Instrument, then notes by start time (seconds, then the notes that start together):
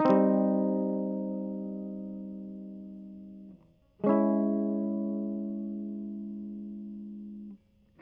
electric guitar
0.00 D#4
0.05 C4
0.10 G3
4.04 G#3 C#4
4.09 E4